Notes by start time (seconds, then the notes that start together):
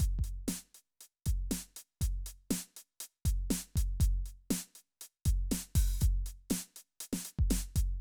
0.00 kick, closed hi-hat
0.19 kick
0.24 closed hi-hat
0.48 snare, closed hi-hat
0.74 closed hi-hat
1.01 closed hi-hat
1.26 kick, closed hi-hat
1.51 snare, closed hi-hat
1.76 closed hi-hat
2.01 kick, closed hi-hat
2.26 closed hi-hat
2.51 snare, closed hi-hat
2.76 closed hi-hat
3.00 closed hi-hat
3.25 kick, closed hi-hat
3.50 snare, closed hi-hat
3.76 kick, closed hi-hat
4.00 kick, closed hi-hat
4.26 closed hi-hat
4.50 snare, closed hi-hat
4.75 closed hi-hat
5.01 closed hi-hat
5.25 kick, closed hi-hat
5.51 snare, closed hi-hat
5.75 kick, open hi-hat
6.00 kick, closed hi-hat, hi-hat pedal
6.26 closed hi-hat
6.50 snare, closed hi-hat
6.76 closed hi-hat
7.00 closed hi-hat
7.13 snare
7.25 closed hi-hat
7.39 kick
7.50 snare, closed hi-hat
7.76 kick, closed hi-hat